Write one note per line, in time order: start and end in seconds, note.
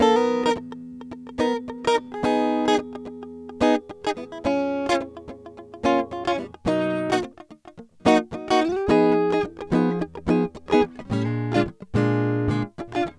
0.01 0.33 F3
0.01 0.18 A#3
0.01 0.16 C#4
0.01 0.17 A4
0.17 0.55 B3
0.17 0.47 D#4
0.17 0.47 A#4
0.34 0.55 F#3
0.47 0.54 D#4
0.47 0.58 A#4
1.39 1.62 B3
1.39 1.52 D#4
1.39 1.65 A#4
1.70 1.85 A#4
1.86 2.03 D#4
1.86 2.04 A#4
2.13 2.25 G#4
2.24 2.69 B3
2.24 2.70 D#4
2.24 2.69 G#4
2.69 2.86 B3
2.69 2.80 D#4
2.69 2.87 G#4
3.62 3.85 B3
3.62 3.86 D#4
3.62 3.85 G#4
4.05 4.16 D#4
4.05 4.15 G#4
4.46 4.91 C#4
4.46 4.91 F4
4.91 5.01 C#4
4.91 5.00 F4
5.29 5.41 C#4
5.85 6.10 A#3
5.85 6.08 C#4
5.85 6.08 F4
6.12 6.26 C#4
6.12 6.25 F4
6.26 6.41 C#4
6.26 6.37 F4
6.66 7.28 B2
6.66 7.28 F#3
6.66 6.78 A#3
6.66 7.14 D#4
7.11 7.22 D#4
7.11 7.25 F#4
8.06 8.25 F#3
8.06 8.29 A#3
8.06 8.28 D#4
8.06 8.24 F#4
8.34 8.50 A#3
8.34 8.52 D#4
8.52 8.72 A#3
8.52 8.90 E4
8.52 8.67 F#4
8.90 9.42 F3
8.90 9.20 B3
8.90 9.35 D#4
8.90 9.33 G#4
9.33 9.45 D#4
9.33 9.53 G#4
9.46 9.53 D4
9.73 10.08 F3
9.73 9.95 B3
9.73 9.97 D#4
9.73 10.11 G#4
10.29 10.50 F3
10.29 10.51 B3
10.29 10.50 D#4
10.29 10.53 G#4
10.73 10.88 B3
10.73 10.90 D#4
10.73 10.91 G#4
11.11 11.28 A2
11.11 11.23 G3
11.11 11.27 C#4
11.23 11.56 G#3
11.28 11.66 A#2
11.28 11.56 D4
11.56 11.67 G#3
11.56 11.69 D4
11.56 11.76 F4
11.95 12.49 A#2
11.95 12.51 G#3
11.95 12.52 D4
11.95 12.73 F4
12.49 12.70 A#2
12.49 12.73 G#3
12.49 12.73 D4
12.89 13.03 A#2
12.97 13.07 D4
12.97 13.12 F4